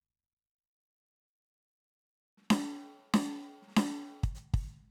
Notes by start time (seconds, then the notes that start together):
2.37 snare
2.42 snare
2.48 snare
2.50 snare
2.98 snare
3.03 snare
3.06 snare
3.14 snare
3.62 snare
3.67 snare
3.70 snare
3.76 snare
4.23 closed hi-hat, kick
4.35 hi-hat pedal
4.54 open hi-hat, kick